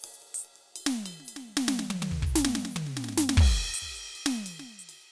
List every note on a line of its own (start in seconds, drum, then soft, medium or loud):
0.01 hi-hat pedal medium
0.01 ride loud
0.14 closed hi-hat medium
0.22 crash soft
0.35 open hi-hat loud
0.41 hi-hat pedal medium
0.45 ride soft
0.56 ride medium
0.76 ride bell medium
0.87 snare loud
0.87 hi-hat pedal medium
1.06 ride bell loud
1.20 snare soft
1.25 hi-hat pedal medium
1.25 ride bell medium
1.37 snare medium
1.49 snare soft
1.57 snare loud
1.68 snare loud
1.68 hi-hat pedal medium
1.79 snare medium
1.87 hi-hat pedal soft
1.87 high tom loud
2.02 high tom loud
2.12 kick soft
2.23 kick medium
2.23 hi-hat pedal medium
2.36 snare loud
2.45 snare loud
2.55 snare medium
2.65 snare medium
2.71 hi-hat pedal medium
2.76 mid tom loud
2.87 snare soft
2.97 snare medium
3.04 snare medium
3.04 hi-hat pedal soft
3.09 snare medium
3.13 snare soft
3.18 snare loud
3.30 snare loud
3.38 kick loud
3.38 crash loud
3.45 hi-hat pedal medium
3.51 closed hi-hat medium
3.64 ride bell soft
3.74 closed hi-hat loud
3.82 kick soft
3.82 ride bell soft
3.95 closed hi-hat medium
4.06 ride soft
4.16 ride bell medium
4.26 snare loud
4.46 ride bell medium
4.60 snare soft
4.70 ride soft
4.79 closed hi-hat medium
4.89 ride bell medium
5.01 closed hi-hat soft